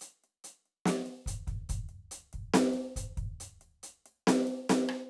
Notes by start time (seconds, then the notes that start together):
0.01 closed hi-hat
0.24 closed hi-hat
0.44 closed hi-hat
0.66 closed hi-hat
0.86 closed hi-hat, snare
1.06 closed hi-hat
1.26 closed hi-hat, kick
1.47 kick, snare, closed hi-hat
1.69 closed hi-hat, kick
1.89 closed hi-hat
2.11 closed hi-hat
2.33 kick, closed hi-hat
2.54 closed hi-hat, snare
2.73 snare, closed hi-hat
2.96 closed hi-hat, kick
3.17 kick, closed hi-hat
3.40 closed hi-hat
3.61 closed hi-hat
3.83 closed hi-hat
4.06 closed hi-hat
4.27 closed hi-hat, snare
4.47 closed hi-hat
4.69 closed hi-hat, snare
4.89 cross-stick, closed hi-hat